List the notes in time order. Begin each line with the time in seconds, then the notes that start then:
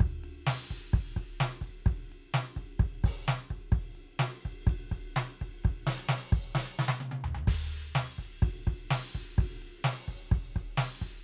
0.01 kick, ride
0.24 ride
0.47 snare, crash
0.71 kick, ride
0.94 kick, ride
1.17 kick, ride
1.41 snare, ride
1.62 kick, ride
1.87 kick, ride
2.12 ride
2.35 snare, ride
2.57 kick, ride
2.80 kick, ride
3.05 open hi-hat, kick, ride
3.28 snare, hi-hat pedal
3.51 kick, ride
3.73 kick, ride
3.96 ride
4.20 snare, ride
4.46 kick, ride
4.67 kick, ride
4.92 kick, ride
5.17 snare, ride
5.42 kick, ride
5.65 kick, ride
5.87 open hi-hat, snare
6.06 open hi-hat, kick, snare
6.33 kick
6.56 open hi-hat, snare
6.80 snare
6.89 snare
7.01 high tom
7.12 high tom
7.25 floor tom
7.35 floor tom
7.43 kick
7.48 kick, crash
7.96 snare, ride
8.19 kick, ride
8.43 kick, ride
8.68 kick, ride
8.91 snare, crash
9.15 kick, ride
9.39 kick, ride
9.63 ride
9.85 open hi-hat, snare
10.09 kick, ride
10.32 kick, ride
10.57 kick, ride
10.78 snare, crash
11.02 kick, ride